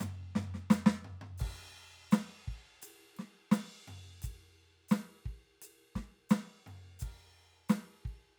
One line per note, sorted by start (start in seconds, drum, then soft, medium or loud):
0.01 snare medium
0.01 floor tom medium
0.01 hi-hat pedal medium
0.36 snare medium
0.36 floor tom medium
0.55 snare soft
0.71 snare loud
0.71 hi-hat pedal medium
0.87 snare loud
1.06 floor tom medium
1.22 floor tom medium
1.39 kick medium
1.39 hi-hat pedal soft
1.39 crash medium
2.12 snare loud
2.12 hi-hat pedal medium
2.12 ride soft
2.49 kick soft
2.53 ride soft
2.83 hi-hat pedal medium
2.83 ride medium
3.03 ride soft
3.18 snare soft
3.18 ride soft
3.52 snare loud
3.52 hi-hat pedal medium
3.52 ride medium
3.89 floor tom soft
3.89 ride soft
4.23 kick soft
4.23 hi-hat pedal medium
4.23 ride soft
4.57 ride soft
4.90 snare loud
4.90 hi-hat pedal medium
4.90 ride medium
5.27 kick soft
5.27 ride soft
5.63 hi-hat pedal medium
5.63 ride medium
5.96 kick soft
5.96 snare medium
5.96 ride soft
6.30 snare loud
6.30 hi-hat pedal medium
6.30 ride soft
6.67 floor tom soft
6.67 ride soft
7.00 kick soft
7.00 hi-hat pedal medium
7.00 crash soft
7.70 snare loud
7.70 hi-hat pedal medium
7.70 ride medium
8.06 kick soft
8.06 ride soft